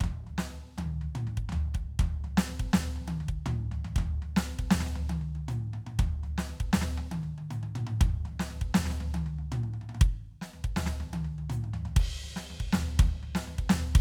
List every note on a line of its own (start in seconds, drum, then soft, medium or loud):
0.01 kick medium
0.01 floor tom loud
0.04 floor tom loud
0.27 floor tom medium
0.39 snare medium
0.51 floor tom medium
0.78 floor tom loud
0.78 high tom loud
1.02 floor tom medium
1.16 mid tom loud
1.28 floor tom medium
1.38 kick medium
1.50 floor tom loud
1.53 floor tom loud
1.75 kick medium
1.75 floor tom medium
2.00 kick medium
2.00 floor tom loud
2.25 floor tom medium
2.38 snare loud
2.50 floor tom medium
2.60 kick medium
2.74 snare loud
2.74 floor tom loud
2.97 floor tom medium
3.08 high tom loud
3.21 floor tom medium
3.29 kick medium
3.47 floor tom loud
3.47 mid tom loud
3.72 floor tom medium
3.85 floor tom medium
3.97 kick medium
3.97 floor tom loud
4.23 floor tom medium
4.37 snare loud
4.49 floor tom medium
4.59 kick medium
4.71 snare loud
4.71 floor tom loud
4.81 snare medium
4.86 snare soft
4.96 floor tom medium
5.10 high tom loud
5.22 floor tom medium
5.36 high tom medium
5.49 hi-hat pedal soft
5.49 mid tom loud
5.74 mid tom medium
5.87 mid tom medium
6.00 kick medium
6.00 floor tom loud
6.24 floor tom medium
6.24 hi-hat pedal soft
6.39 snare medium
6.50 floor tom medium
6.61 kick medium
6.74 snare loud
6.74 floor tom loud
6.82 snare medium
6.90 snare soft
6.98 floor tom medium
7.12 high tom loud
7.21 floor tom medium
7.21 hi-hat pedal soft
7.39 high tom medium
7.51 hi-hat pedal soft
7.51 mid tom loud
7.64 high tom medium
7.76 mid tom loud
7.88 mid tom loud
8.01 kick loud
8.01 floor tom loud
8.26 floor tom medium
8.40 snare medium
8.51 floor tom medium
8.62 kick medium
8.75 snare loud
8.75 floor tom loud
8.86 snare medium
8.90 snare medium
9.01 floor tom medium
9.15 high tom loud
9.27 floor tom medium
9.39 mid tom soft
9.52 hi-hat pedal soft
9.52 mid tom loud
9.64 mid tom medium
9.74 mid tom medium
9.82 mid tom medium
9.90 mid tom medium
9.95 mid tom medium
10.02 kick loud
10.32 floor tom soft
10.42 snare medium
10.54 floor tom medium
10.65 kick medium
10.77 snare loud
10.77 floor tom loud
10.87 snare medium
11.01 floor tom medium
11.01 hi-hat pedal soft
11.14 high tom loud
11.25 floor tom medium
11.39 high tom medium
11.50 hi-hat pedal medium
11.50 mid tom loud
11.65 mid tom medium
11.74 floor tom loud
11.86 floor tom medium
11.97 kick loud
11.97 ride loud
12.24 floor tom soft
12.37 snare medium
12.51 floor tom medium
12.61 kick medium
12.73 snare loud
12.73 floor tom loud
13.00 kick loud
13.00 snare soft
13.00 floor tom loud
13.23 floor tom medium
13.36 snare loud
13.48 floor tom medium
13.59 kick medium
13.70 snare loud
13.70 floor tom loud
13.96 kick loud
13.96 ride loud